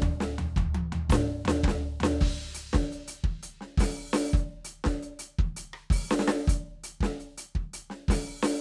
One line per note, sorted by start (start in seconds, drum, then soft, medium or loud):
0.01 kick loud
0.01 floor tom loud
0.01 hi-hat pedal medium
0.21 snare loud
0.39 floor tom loud
0.56 kick loud
0.56 floor tom loud
0.75 high tom loud
0.92 floor tom loud
1.10 kick loud
1.10 snare loud
1.10 hi-hat pedal soft
1.10 mid tom loud
1.45 snare loud
1.45 floor tom loud
1.64 kick loud
1.64 hi-hat pedal soft
1.64 floor tom loud
1.68 snare loud
2.00 snare loud
2.00 floor tom loud
2.21 kick loud
2.21 hi-hat pedal soft
2.21 crash loud
2.55 closed hi-hat loud
2.73 kick loud
2.73 snare loud
2.92 closed hi-hat medium
3.08 closed hi-hat loud
3.24 kick loud
3.43 closed hi-hat loud
3.61 snare medium
3.78 open hi-hat loud
3.78 kick loud
3.78 snare loud
4.13 open hi-hat loud
4.13 snare loud
4.31 kick loud
4.31 hi-hat pedal soft
4.37 closed hi-hat medium
4.65 closed hi-hat loud
4.84 kick loud
4.84 snare loud
5.03 closed hi-hat medium
5.19 closed hi-hat loud
5.39 kick loud
5.57 closed hi-hat loud
5.73 cross-stick medium
5.90 open hi-hat loud
5.90 kick loud
6.11 snare loud
6.19 snare loud
6.28 snare loud
6.47 closed hi-hat loud
6.47 kick loud
6.47 hi-hat pedal medium
6.84 closed hi-hat loud
7.01 kick loud
7.01 snare loud
7.20 closed hi-hat medium
7.38 closed hi-hat loud
7.55 kick medium
7.74 closed hi-hat loud
7.90 snare medium
8.08 open hi-hat loud
8.08 kick loud
8.08 snare loud
8.43 open hi-hat loud
8.43 snare loud